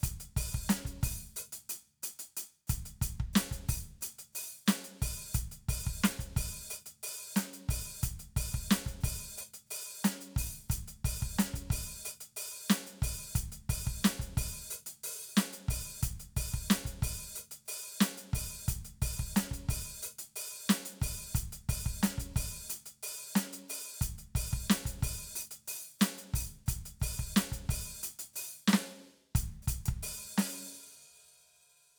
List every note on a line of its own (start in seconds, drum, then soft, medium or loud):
0.01 closed hi-hat loud
0.01 kick medium
0.01 hi-hat pedal medium
0.21 closed hi-hat medium
0.37 open hi-hat loud
0.37 kick medium
0.55 kick medium
0.68 closed hi-hat loud
0.68 snare loud
0.68 hi-hat pedal medium
0.86 closed hi-hat medium
0.86 kick soft
1.02 open hi-hat loud
1.02 kick medium
1.02 hi-hat pedal soft
1.37 open hi-hat loud
1.37 hi-hat pedal medium
1.53 closed hi-hat loud
1.70 closed hi-hat loud
2.03 closed hi-hat loud
2.03 hi-hat pedal medium
2.20 closed hi-hat medium
2.38 closed hi-hat loud
2.68 closed hi-hat loud
2.68 kick medium
2.68 hi-hat pedal medium
2.86 closed hi-hat medium
3.02 open hi-hat loud
3.02 kick medium
3.21 kick medium
3.34 closed hi-hat loud
3.34 snare loud
3.34 hi-hat pedal medium
3.52 closed hi-hat medium
3.52 kick medium
3.69 open hi-hat loud
3.69 kick medium
3.69 hi-hat pedal soft
4.02 closed hi-hat loud
4.02 hi-hat pedal medium
4.19 closed hi-hat medium
4.33 open hi-hat loud
4.33 hi-hat pedal soft
4.67 closed hi-hat loud
4.67 snare loud
4.67 hi-hat pedal medium
4.85 closed hi-hat medium
5.03 open hi-hat loud
5.03 kick medium
5.34 closed hi-hat loud
5.34 kick medium
5.34 hi-hat pedal medium
5.52 closed hi-hat medium
5.69 open hi-hat loud
5.69 kick medium
5.88 kick medium
6.02 closed hi-hat loud
6.02 snare loud
6.02 hi-hat pedal medium
6.20 closed hi-hat medium
6.20 kick soft
6.37 open hi-hat loud
6.37 kick medium
6.71 open hi-hat loud
6.71 hi-hat pedal medium
6.87 closed hi-hat medium
7.04 open hi-hat loud
7.36 closed hi-hat loud
7.36 snare loud
7.36 hi-hat pedal medium
7.54 closed hi-hat medium
7.69 open hi-hat loud
7.69 kick medium
7.69 hi-hat pedal soft
8.02 closed hi-hat loud
8.02 kick medium
8.02 hi-hat pedal medium
8.20 closed hi-hat medium
8.37 open hi-hat loud
8.37 kick medium
8.55 kick medium
8.70 closed hi-hat loud
8.70 snare loud
8.70 hi-hat pedal medium
8.87 closed hi-hat medium
8.87 kick medium
9.01 open hi-hat loud
9.01 kick medium
9.01 hi-hat pedal medium
9.38 open hi-hat loud
9.38 hi-hat pedal medium
9.55 closed hi-hat medium
9.67 hi-hat pedal soft
9.71 open hi-hat loud
10.04 closed hi-hat loud
10.04 snare loud
10.04 hi-hat pedal medium
10.22 closed hi-hat medium
10.36 open hi-hat loud
10.36 kick medium
10.36 hi-hat pedal soft
10.70 closed hi-hat loud
10.70 kick medium
10.70 hi-hat pedal medium
10.89 closed hi-hat medium
11.05 open hi-hat loud
11.05 kick medium
11.23 kick medium
11.38 closed hi-hat loud
11.38 snare loud
11.38 hi-hat pedal medium
11.55 closed hi-hat medium
11.55 kick medium
11.71 open hi-hat loud
11.71 kick medium
12.05 open hi-hat loud
12.05 hi-hat pedal medium
12.21 closed hi-hat medium
12.37 open hi-hat loud
12.69 closed hi-hat loud
12.69 snare loud
12.69 hi-hat pedal medium
12.88 closed hi-hat medium
13.03 open hi-hat loud
13.03 kick medium
13.35 closed hi-hat loud
13.35 kick medium
13.35 hi-hat pedal medium
13.53 closed hi-hat medium
13.70 open hi-hat loud
13.70 kick medium
13.88 kick medium
14.03 closed hi-hat loud
14.03 snare loud
14.03 hi-hat pedal medium
14.20 closed hi-hat medium
14.20 kick medium
14.38 open hi-hat loud
14.38 kick medium
14.71 open hi-hat loud
14.71 hi-hat pedal medium
14.87 closed hi-hat loud
15.04 open hi-hat loud
15.37 open hi-hat loud
15.37 snare loud
15.37 hi-hat pedal medium
15.54 closed hi-hat medium
15.69 open hi-hat loud
15.69 kick medium
16.02 closed hi-hat loud
16.02 kick medium
16.02 hi-hat pedal medium
16.21 closed hi-hat medium
16.37 open hi-hat loud
16.37 kick medium
16.55 kick medium
16.69 closed hi-hat loud
16.69 snare loud
16.69 hi-hat pedal medium
16.86 closed hi-hat medium
16.86 kick soft
17.03 open hi-hat loud
17.03 kick medium
17.36 open hi-hat loud
17.36 hi-hat pedal medium
17.52 closed hi-hat medium
17.66 open hi-hat loud
17.66 hi-hat pedal soft
18.01 closed hi-hat loud
18.01 snare loud
18.01 hi-hat pedal medium
18.18 closed hi-hat medium
18.34 open hi-hat loud
18.34 kick medium
18.68 closed hi-hat loud
18.68 kick medium
18.68 hi-hat pedal medium
18.86 closed hi-hat medium
19.03 open hi-hat loud
19.03 kick medium
19.20 kick medium
19.35 closed hi-hat loud
19.35 snare loud
19.35 hi-hat pedal medium
19.52 closed hi-hat medium
19.52 kick soft
19.70 open hi-hat loud
19.70 kick medium
20.03 open hi-hat loud
20.03 hi-hat pedal medium
20.19 closed hi-hat loud
20.37 open hi-hat loud
20.69 closed hi-hat loud
20.69 snare loud
20.69 hi-hat pedal medium
20.86 closed hi-hat medium
21.02 open hi-hat loud
21.02 kick medium
21.02 hi-hat pedal soft
21.34 closed hi-hat loud
21.34 kick medium
21.34 hi-hat pedal medium
21.53 closed hi-hat medium
21.70 open hi-hat loud
21.70 kick medium
21.87 kick medium
22.03 closed hi-hat loud
22.03 snare loud
22.03 hi-hat pedal medium
22.19 closed hi-hat medium
22.19 kick medium
22.34 open hi-hat loud
22.34 kick medium
22.34 hi-hat pedal soft
22.70 closed hi-hat loud
22.70 hi-hat pedal medium
22.87 closed hi-hat medium
23.04 open hi-hat loud
23.34 closed hi-hat loud
23.34 snare loud
23.34 hi-hat pedal soft
23.54 closed hi-hat medium
23.69 open hi-hat loud
23.69 hi-hat pedal soft
24.02 closed hi-hat loud
24.02 kick medium
24.02 hi-hat pedal medium
24.19 closed hi-hat medium
24.36 open hi-hat loud
24.36 kick medium
24.54 kick medium
24.68 closed hi-hat loud
24.68 snare loud
24.68 hi-hat pedal medium
24.86 closed hi-hat medium
24.86 kick medium
24.99 hi-hat pedal soft
25.03 open hi-hat loud
25.03 kick medium
25.36 open hi-hat loud
25.36 hi-hat pedal medium
25.52 closed hi-hat medium
25.66 open hi-hat loud
25.66 hi-hat pedal soft
26.00 closed hi-hat loud
26.00 snare loud
26.00 hi-hat pedal medium
26.19 closed hi-hat medium
26.34 open hi-hat loud
26.34 kick medium
26.34 hi-hat pedal soft
26.67 closed hi-hat loud
26.67 kick medium
26.67 hi-hat pedal medium
26.86 closed hi-hat medium
27.01 open hi-hat loud
27.01 kick medium
27.01 hi-hat pedal soft
27.20 kick medium
27.35 closed hi-hat loud
27.35 snare loud
27.35 hi-hat pedal medium
27.53 closed hi-hat medium
27.53 kick medium
27.65 hi-hat pedal soft
27.70 open hi-hat loud
27.70 kick medium
28.02 closed hi-hat loud
28.02 hi-hat pedal medium
28.20 closed hi-hat loud
28.34 open hi-hat loud
28.34 hi-hat pedal soft
28.69 snare loud
28.69 hi-hat pedal medium
28.74 snare loud
29.36 open hi-hat loud
29.36 kick loud
29.63 hi-hat pedal medium
29.68 closed hi-hat loud
29.68 kick medium
29.87 kick medium
29.87 closed hi-hat loud
30.04 open hi-hat loud
30.39 open hi-hat loud
30.39 snare loud